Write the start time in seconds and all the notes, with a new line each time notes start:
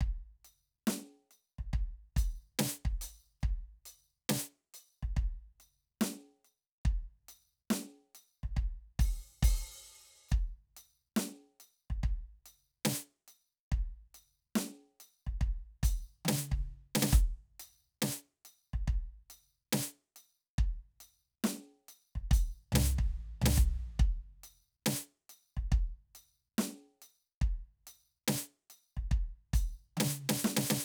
0.01 kick
0.45 closed hi-hat
0.88 snare
1.31 closed hi-hat
1.59 kick
1.74 kick
2.17 closed hi-hat, kick
2.59 snare
2.85 kick
3.02 closed hi-hat, cross-stick
3.41 kick, hi-hat pedal
3.86 closed hi-hat
4.30 snare
4.74 closed hi-hat
5.03 kick
5.17 kick, crash, ride
5.60 closed hi-hat
6.01 snare
6.45 closed hi-hat
6.86 kick, crash
7.29 closed hi-hat
7.71 snare
8.15 closed hi-hat
8.44 kick
8.57 kick, crash
9.00 kick, cross-stick, percussion
9.43 kick, percussion
10.29 kick, hi-hat pedal
10.35 crash
10.77 closed hi-hat
11.17 snare
11.60 closed hi-hat
11.90 kick
12.04 kick, crash, ride
12.46 closed hi-hat
12.85 snare
13.28 closed hi-hat
13.72 kick, snare, crash, ride
14.15 closed hi-hat
14.56 snare
15.01 closed hi-hat
15.27 kick
15.41 kick, crash, ride
15.83 closed hi-hat, kick
16.25 snare, high tom
16.52 kick
16.96 snare
17.03 snare
17.13 kick
17.60 closed hi-hat
18.02 snare
18.45 closed hi-hat
18.74 kick
18.88 kick, snare, crash, ride
19.30 closed hi-hat
19.73 snare
20.16 closed hi-hat
20.59 kick, snare, crash, ride
21.01 closed hi-hat
21.44 snare
21.89 closed hi-hat
22.16 kick
22.31 closed hi-hat, kick, snare
22.73 snare, floor tom
22.99 kick
23.42 floor tom
23.46 snare
23.58 kick
24.00 kick, snare, crash, ride
24.44 closed hi-hat
24.86 snare
25.30 closed hi-hat
25.57 kick
25.72 kick
26.15 closed hi-hat
26.59 snare
27.02 closed hi-hat
27.42 kick, crash
27.87 closed hi-hat
28.28 snare
28.70 closed hi-hat
28.97 kick
29.12 kick, crash, ride
29.54 closed hi-hat, kick
29.97 snare, high tom
30.29 snare, hi-hat pedal
30.45 snare
30.57 snare
30.71 snare